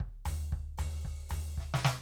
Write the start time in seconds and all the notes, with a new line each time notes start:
0.00 kick
0.25 open hi-hat, floor tom
0.52 kick
0.78 open hi-hat, floor tom
1.05 kick
1.29 open hi-hat, floor tom
1.57 kick, snare
1.74 snare
1.80 hi-hat pedal
1.85 snare